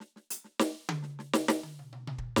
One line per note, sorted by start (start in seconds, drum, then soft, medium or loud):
0.00 snare soft
0.16 snare soft
0.30 closed hi-hat loud
0.44 snare soft
0.59 snare loud
0.74 snare soft
0.89 high tom loud
1.02 snare soft
1.19 snare soft
1.33 snare loud
1.48 snare loud
1.63 high tom medium
1.79 mid tom soft
1.93 mid tom medium
2.07 mid tom medium
2.18 kick soft
2.36 snare loud
2.36 floor tom loud